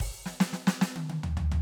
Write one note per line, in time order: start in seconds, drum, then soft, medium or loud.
0.00 open hi-hat loud
0.00 kick medium
0.26 snare medium
0.40 snare loud
0.53 snare medium
0.67 snare loud
0.81 snare loud
0.96 high tom loud
1.10 high tom loud
1.23 floor tom loud
1.37 floor tom loud
1.52 floor tom loud